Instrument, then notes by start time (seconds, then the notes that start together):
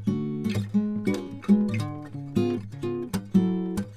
acoustic guitar
0.08 D3 A3 C#4 F#4
0.46 A3
0.75 G#3
1.08 C#4 F#4 B4
1.17 F4 A#4
1.50 G#3 D4 F#4 B4
1.70 D4
1.81 D3
2.15 C#3
2.37 B3 F4 G#4
2.74 C#3
2.84 B3 F4 G#4
3.14 G2
3.35 F#3 E4 A4
3.78 G#2